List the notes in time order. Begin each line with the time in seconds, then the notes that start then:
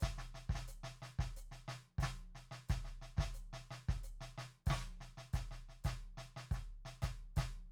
0.01 kick, snare, hi-hat pedal
0.19 snare
0.35 snare
0.50 kick, snare
0.55 snare
0.68 hi-hat pedal
0.84 snare
1.03 snare
1.20 kick, snare
1.37 hi-hat pedal
1.52 snare
1.69 snare
1.99 kick, snare, hi-hat pedal
2.03 snare
2.36 snare
2.52 snare
2.69 kick, snare, hi-hat pedal
2.85 snare
3.02 snare
3.17 kick, snare
3.20 snare
3.35 hi-hat pedal
3.54 snare
3.71 snare
3.89 kick, snare
4.04 hi-hat pedal
4.21 snare
4.38 snare
4.67 kick, snare, hi-hat pedal
4.71 snare
5.01 snare
5.18 snare
5.34 kick, snare, hi-hat pedal
5.52 snare
5.69 snare
5.85 kick, snare, hi-hat pedal
6.18 snare
6.37 snare
6.52 kick, snare, hi-hat pedal
6.86 snare
7.03 kick, snare, hi-hat pedal
7.37 kick, snare, hi-hat pedal